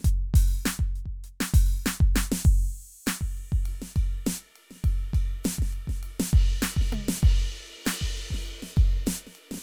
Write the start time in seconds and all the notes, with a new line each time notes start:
0.01 closed hi-hat, kick, snare
0.34 open hi-hat, kick
0.63 closed hi-hat, snare, hi-hat pedal
0.79 kick
0.96 closed hi-hat
1.06 kick
1.24 closed hi-hat
1.40 snare
1.54 open hi-hat, kick
1.85 snare, hi-hat pedal
2.00 kick
2.13 snare, hi-hat pedal
2.32 snare
2.45 kick, crash
2.71 hi-hat pedal
3.05 snare, hi-hat pedal, ride
3.21 kick
3.34 hi-hat pedal, ride
3.52 kick
3.64 hi-hat pedal, ride
3.82 snare
3.96 kick, ride bell
4.25 snare, hi-hat pedal, ride
4.56 ride
4.71 snare
4.76 snare
4.83 kick, hi-hat pedal, ride
5.13 kick, ride bell
5.43 snare, hi-hat pedal, ride
5.58 kick, snare
5.72 hi-hat pedal, ride
5.88 kick, snare
6.03 hi-hat pedal, ride
6.20 snare
6.33 kick, ride
6.61 snare, hi-hat pedal, ride
6.77 kick
6.81 snare
6.91 hi-hat pedal, mid tom
7.08 snare
7.23 kick, ride
7.84 snare, hi-hat pedal, ride
8.01 kick
8.14 hi-hat pedal, ride
8.31 kick, snare
8.45 hi-hat pedal, ride
8.62 snare
8.77 kick, ride bell
9.06 snare, hi-hat pedal, ride
9.27 snare
9.34 hi-hat pedal, ride
9.51 snare
9.54 snare
9.58 snare